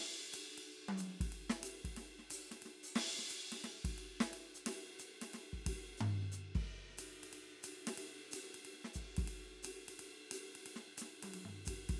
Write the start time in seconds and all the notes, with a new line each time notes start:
0.32 hi-hat pedal, ride
0.58 ride
0.88 high tom
0.98 hi-hat pedal, ride
1.21 kick, ride
1.32 ride
1.50 snare
1.63 hi-hat pedal, ride
1.85 kick, ride
1.97 snare, ride
2.19 snare
2.30 hi-hat pedal, ride
2.51 snare, ride
2.62 snare, ride
2.83 hi-hat pedal
2.96 snare, ride
3.19 snare
3.29 hi-hat pedal, ride
3.52 snare, ride
3.64 snare, ride
3.85 kick, ride
3.98 ride
4.20 snare
4.33 ride
4.55 hi-hat pedal
4.66 snare, ride
4.99 hi-hat pedal, ride
5.22 snare, ride
5.34 snare, ride
5.53 kick
5.66 kick, ride
5.90 snare
5.97 floor tom, hi-hat pedal
6.22 snare
6.32 snare, hi-hat pedal
6.55 kick, crash
6.90 snare
6.98 hi-hat pedal, ride
7.23 ride
7.33 ride
7.63 hi-hat pedal, ride
7.87 snare, ride
7.98 ride
8.31 hi-hat pedal, ride
8.55 ride
8.65 ride
8.70 snare, hi-hat pedal
8.85 snare
8.93 kick, hi-hat pedal, ride
9.17 kick, ride
9.28 ride
9.53 snare
9.63 hi-hat pedal, ride
9.88 ride
9.99 ride
10.31 hi-hat pedal, ride
10.55 ride
10.66 ride
10.76 snare
10.98 snare, hi-hat pedal, ride
11.23 high tom, ride
11.34 ride
11.45 floor tom
11.65 kick, hi-hat pedal, ride
11.89 kick, ride